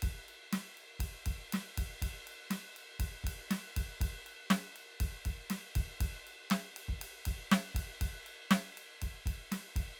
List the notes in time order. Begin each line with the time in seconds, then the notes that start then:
0.02 kick, ride
0.28 ride
0.53 snare, ride
0.77 ride
0.99 kick, ride
1.26 kick, ride
1.52 snare, ride
1.77 kick, ride
2.02 kick, ride
2.27 ride
2.50 snare, ride
2.76 ride
2.99 kick, ride
3.24 kick, ride
3.51 snare, ride
3.76 kick, ride
4.01 kick, ride
4.26 ride
4.50 snare, ride
4.76 ride
5.00 kick, ride
5.25 kick, ride
5.50 snare, ride
5.75 kick, ride
6.00 kick, ride
6.27 ride
6.50 snare, ride
6.76 ride
6.88 kick
7.01 ride
7.25 kick, ride
7.52 snare, ride
7.74 kick, ride
8.01 kick, ride
8.26 ride
8.51 snare, ride
8.77 ride
9.02 kick, ride
9.26 kick, ride
9.52 snare, ride
9.76 kick, ride